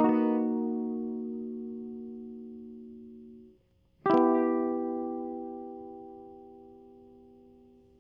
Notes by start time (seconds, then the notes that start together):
0.00 D#4
0.05 F#4
4.06 E4 G4
4.14 B3